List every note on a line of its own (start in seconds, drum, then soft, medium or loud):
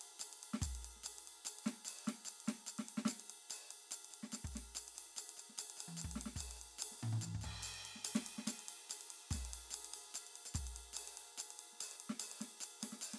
0.01 ride medium
0.20 ride medium
0.20 percussion loud
0.33 ride medium
0.43 ride medium
0.54 snare medium
0.62 kick medium
0.62 ride medium
0.62 percussion medium
0.75 ride medium
0.82 ride medium
0.82 percussion soft
0.96 snare soft
1.04 ride loud
1.04 percussion medium
1.18 ride medium
1.23 percussion soft
1.28 ride medium
1.45 ride loud
1.45 percussion loud
1.59 ride medium
1.64 snare medium
1.64 ride medium
1.64 percussion soft
1.85 ride medium
1.85 percussion loud
1.99 ride medium
2.05 snare medium
2.05 percussion soft
2.09 ride medium
2.25 ride medium
2.25 percussion loud
2.40 ride medium
2.44 snare medium
2.44 percussion soft
2.49 ride medium
2.67 ride medium
2.67 percussion loud
2.78 snare soft
2.78 ride medium
2.86 ride medium
2.86 percussion soft
2.97 snare medium
3.05 snare medium
3.05 ride medium
3.05 percussion loud
3.20 ride medium
3.26 ride medium
3.26 percussion soft
3.50 ride medium
3.50 percussion loud
3.71 ride medium
3.91 ride medium
3.91 percussion loud
4.05 ride medium
4.11 ride medium
4.11 percussion soft
4.23 snare soft
4.32 snare soft
4.32 ride medium
4.32 percussion medium
4.44 kick soft
4.44 ride medium
4.52 snare soft
4.52 percussion soft
4.57 ride medium
4.75 ride medium
4.75 percussion loud
4.88 ride medium
4.95 ride medium
4.95 percussion soft
5.16 ride loud
5.16 percussion medium
5.29 ride medium
5.37 ride medium
5.37 percussion medium
5.49 snare soft
5.58 ride loud
5.58 percussion medium
5.70 ride medium
5.77 ride medium
5.77 percussion medium
5.88 high tom soft
5.97 percussion loud
6.02 kick soft
6.02 ride medium
6.11 ride medium
6.11 percussion soft
6.16 snare soft
6.21 ride medium
6.26 snare soft
6.36 kick soft
6.36 percussion medium
6.41 ride medium
6.51 ride medium
6.57 percussion soft
6.62 ride medium
6.79 ride loud
6.79 percussion loud
6.91 snare soft
6.99 floor tom medium
6.99 percussion soft
7.13 floor tom medium
7.21 high tom soft
7.21 percussion loud
7.35 kick soft
7.41 kick soft
7.41 percussion medium
7.41 ride medium
7.63 ride medium
7.63 percussion loud
7.74 ride medium
7.83 ride medium
7.83 percussion soft
7.95 snare soft
8.05 ride loud
8.05 percussion loud
8.14 kick soft
8.14 snare medium
8.14 ride medium
8.24 ride medium
8.24 percussion soft
8.38 snare soft
8.47 snare soft
8.47 ride loud
8.47 percussion loud
8.59 ride medium
8.66 ride medium
8.66 percussion soft
8.90 ride loud
8.90 percussion medium
9.01 ride medium
9.10 ride medium
9.31 kick medium
9.31 snare soft
9.31 ride medium
9.31 percussion medium
9.45 ride medium
9.53 ride medium
9.71 ride loud
9.71 percussion medium
9.85 ride medium
9.94 ride medium
10.14 ride medium
10.14 percussion loud
10.27 ride medium
10.36 ride medium
10.45 percussion medium
10.54 kick medium
10.54 ride medium
10.54 percussion medium
10.67 ride medium
10.76 ride medium
10.93 ride loud
10.93 percussion medium
11.08 ride medium
11.17 ride medium
11.38 ride medium
11.38 percussion loud
11.51 ride medium
11.59 ride medium
11.72 snare soft
11.81 ride loud
11.81 percussion loud
11.91 ride medium
12.00 ride medium
12.09 snare soft
12.20 ride loud
12.20 percussion medium
12.32 ride medium
12.39 snare soft
12.39 ride medium
12.39 percussion soft
12.60 ride medium
12.60 percussion loud
12.80 snare soft
12.80 ride loud
12.80 percussion soft
12.92 snare soft
13.01 ride medium
13.01 percussion loud
13.13 snare soft
13.13 ride medium